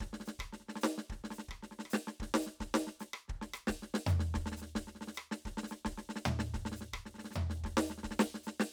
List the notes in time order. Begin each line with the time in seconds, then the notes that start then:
0.01 kick, snare
0.07 kick
0.14 snare
0.21 snare
0.26 snare, hi-hat pedal
0.40 kick, cross-stick
0.45 kick
0.53 snare
0.61 snare
0.67 snare
0.69 snare
0.76 snare
0.82 snare, hi-hat pedal
0.98 snare
1.10 kick, snare
1.16 kick
1.24 snare
1.31 snare, hi-hat pedal
1.39 snare
1.49 kick, cross-stick
1.63 snare
1.72 snare
1.79 snare
1.86 cross-stick
1.91 snare, hi-hat pedal
2.08 snare
2.20 kick, snare
2.26 kick
2.35 snare
2.42 hi-hat pedal
2.47 snare
2.61 kick, snare
2.75 snare
2.88 snare
3.00 snare, hi-hat pedal
3.14 cross-stick
3.29 kick, snare
3.37 kick
3.42 snare
3.54 cross-stick, hi-hat pedal
3.68 kick, snare
3.83 snare
3.95 snare
4.07 floor tom, hi-hat pedal
4.20 snare
4.35 kick, snare
4.42 kick
4.46 snare
4.52 snare
4.58 snare, hi-hat pedal
4.62 snare
4.76 kick, snare
4.88 snare
4.96 snare
5.02 snare
5.08 snare
5.15 cross-stick, hi-hat pedal
5.32 snare
5.46 kick, snare
5.52 kick
5.58 snare
5.64 snare
5.68 snare, hi-hat pedal
5.85 kick, snare
5.92 kick
5.98 snare
6.10 snare
6.16 snare
6.25 hi-hat pedal, floor tom
6.40 snare
6.54 kick, snare
6.60 kick
6.66 snare
6.72 snare
6.77 hi-hat pedal
6.81 snare
6.94 kick, cross-stick
7.06 snare
7.15 snare
7.19 snare
7.25 snare
7.31 snare, hi-hat pedal
7.36 floor tom
7.50 snare
7.64 kick, snare
7.72 kick
7.78 snare
7.87 snare, hi-hat pedal
7.98 snare
8.04 kick, snare
8.11 snare
8.20 snare
8.35 snare
8.44 snare, hi-hat pedal
8.60 snare